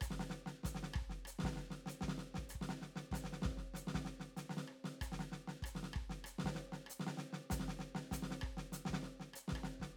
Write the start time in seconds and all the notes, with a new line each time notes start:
0.01 kick, cross-stick, hi-hat pedal
0.11 snare
0.20 snare
0.30 snare
0.46 snare
0.63 kick, snare, hi-hat pedal
0.75 snare
0.83 snare
0.94 kick, cross-stick
1.02 kick
1.10 snare
1.25 cross-stick, hi-hat pedal
1.39 snare
1.43 kick, snare
1.52 snare
1.56 snare
1.70 snare
1.86 snare, hi-hat pedal
2.01 kick, snare
2.08 snare
2.18 snare
2.34 kick, snare
2.49 cross-stick, hi-hat pedal
2.55 kick
2.61 snare
2.69 snare
2.82 snare
2.96 snare
3.11 kick, snare, hi-hat pedal
3.24 snare
3.33 snare
3.42 kick, snare
3.51 kick
3.57 snare
3.74 snare, hi-hat pedal
3.87 snare
3.94 kick, snare
4.05 snare
4.20 snare
4.37 snare, hi-hat pedal
4.49 snare
4.57 snare
4.68 cross-stick
4.84 snare
5.01 kick, cross-stick, hi-hat pedal
5.12 snare
5.19 snare
5.32 snare
5.48 snare
5.62 kick, cross-stick, hi-hat pedal
5.75 snare
5.83 snare
5.93 kick, cross-stick
6.10 snare
6.24 cross-stick, hi-hat pedal
6.39 snare
6.44 kick, snare
6.55 snare
6.72 snare
6.86 cross-stick, hi-hat pedal
7.00 snare
7.07 snare
7.17 snare
7.33 snare
7.50 kick, snare, hi-hat pedal
7.60 snare
7.68 snare
7.79 snare
7.95 snare
8.11 kick, snare, hi-hat pedal
8.22 snare
8.31 snare
8.41 kick, cross-stick
8.57 snare
8.72 snare, hi-hat pedal
8.85 snare
8.90 kick, snare
9.03 snare
9.20 snare
9.34 cross-stick, hi-hat pedal
9.48 snare
9.52 kick, cross-stick
9.64 snare
9.80 kick, snare